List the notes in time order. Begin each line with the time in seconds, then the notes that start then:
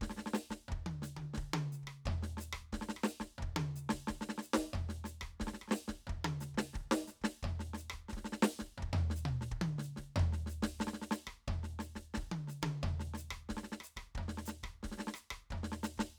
0.01 kick, snare
0.10 snare
0.16 snare
0.18 snare
0.26 snare
0.33 snare, hi-hat pedal
0.50 kick, snare
0.68 kick, floor tom
0.86 high tom
1.02 snare, hi-hat pedal
1.17 kick, high tom
1.34 kick, snare
1.54 high tom
1.72 hi-hat pedal
1.83 kick
1.87 cross-stick
2.05 kick, floor tom
2.22 snare
2.37 snare, hi-hat pedal
2.53 kick, cross-stick
2.72 kick, snare
2.81 snare
2.89 snare
2.96 cross-stick
3.04 snare
3.08 hi-hat pedal
3.20 kick, snare
3.38 floor tom
3.42 kick
3.56 high tom
3.76 hi-hat pedal
3.89 kick, snare
4.07 kick, snare
4.21 snare
4.29 snare
4.38 snare
4.42 hi-hat pedal
4.54 kick, snare
4.73 kick, floor tom
4.89 snare
5.04 snare, hi-hat pedal
5.21 kick, cross-stick
5.40 kick, snare
5.47 snare
5.54 snare
5.61 cross-stick
5.68 snare
5.71 snare
5.75 hi-hat pedal
5.88 kick, snare
6.07 kick, floor tom
6.24 high tom
6.40 snare, hi-hat pedal
6.54 kick, snare
6.73 kick, snare
6.91 snare
7.07 snare, hi-hat pedal
7.21 kick, snare
7.43 kick, floor tom
7.59 snare
7.73 snare
7.78 hi-hat pedal
7.90 kick, cross-stick
8.08 snare
8.13 kick, snare
8.24 snare
8.32 snare
8.49 hi-hat pedal
8.59 kick, snare
8.78 floor tom
8.82 kick
8.93 floor tom
9.10 snare
9.16 hi-hat pedal
9.25 kick, mid tom
9.41 snare
9.51 kick
9.61 high tom
9.78 snare
9.82 hi-hat pedal
9.96 kick, snare
10.16 kick, floor tom
10.32 snare
10.46 snare, hi-hat pedal
10.62 kick, snare
10.79 kick, snare
10.87 snare
10.93 snare
11.02 snare
11.11 snare, hi-hat pedal
11.27 kick, cross-stick
11.48 kick, floor tom
11.63 snare
11.79 snare, hi-hat pedal
11.95 kick, snare
12.14 kick, snare
12.31 high tom
12.47 snare, hi-hat pedal
12.62 kick, high tom
12.83 kick, floor tom
13.00 snare
13.14 snare, hi-hat pedal
13.31 kick, cross-stick
13.49 kick, snare
13.57 snare
13.63 snare
13.72 snare
13.80 cross-stick, hi-hat pedal
13.96 kick, cross-stick
14.15 kick, floor tom
14.28 snare
14.37 snare
14.46 snare, hi-hat pedal
14.63 kick, cross-stick
14.83 kick, snare
14.91 snare
14.98 snare
14.99 snare
15.07 snare
15.14 cross-stick, hi-hat pedal
15.30 kick, cross-stick
15.50 kick, floor tom
15.63 snare
15.72 snare
15.83 snare, hi-hat pedal
15.97 kick, snare